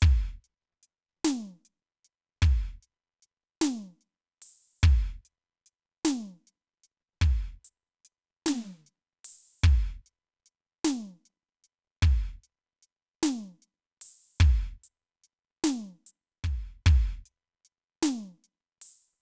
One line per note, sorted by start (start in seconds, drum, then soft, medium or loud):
0.01 kick loud
0.01 hi-hat pedal soft
0.06 closed hi-hat soft
0.44 closed hi-hat soft
0.83 closed hi-hat medium
1.25 closed hi-hat medium
1.25 snare loud
1.65 closed hi-hat medium
2.05 closed hi-hat medium
2.42 kick loud
2.42 closed hi-hat medium
2.83 closed hi-hat medium
3.23 closed hi-hat medium
3.62 snare loud
3.62 closed hi-hat medium
4.01 closed hi-hat soft
4.42 open hi-hat medium
4.83 kick loud
4.83 closed hi-hat soft
4.83 hi-hat pedal soft
5.25 closed hi-hat medium
5.66 closed hi-hat medium
6.05 closed hi-hat loud
6.05 snare loud
6.47 closed hi-hat medium
6.84 closed hi-hat medium
7.21 kick loud
7.21 closed hi-hat medium
7.65 closed hi-hat medium
8.05 closed hi-hat medium
8.46 closed hi-hat medium
8.46 snare loud
8.48 snare medium
8.87 closed hi-hat medium
9.25 open hi-hat loud
9.62 kick loud
9.62 hi-hat pedal soft
9.66 closed hi-hat medium
10.06 closed hi-hat medium
10.46 closed hi-hat medium
10.85 snare loud
10.85 closed hi-hat medium
11.26 closed hi-hat medium
11.64 closed hi-hat medium
12.03 kick loud
12.03 closed hi-hat medium
12.44 closed hi-hat medium
12.83 closed hi-hat medium
13.23 closed hi-hat medium
13.23 snare loud
13.62 closed hi-hat medium
14.02 open hi-hat loud
14.39 kick loud
14.39 hi-hat pedal soft
14.43 closed hi-hat medium
14.84 closed hi-hat medium
15.24 closed hi-hat medium
15.64 snare loud
15.64 closed hi-hat medium
16.07 closed hi-hat medium
16.44 kick medium
16.44 closed hi-hat medium
16.86 kick loud
16.86 closed hi-hat medium
17.26 closed hi-hat medium
17.65 closed hi-hat medium
18.03 closed hi-hat medium
18.03 snare loud
18.44 closed hi-hat medium
18.82 open hi-hat medium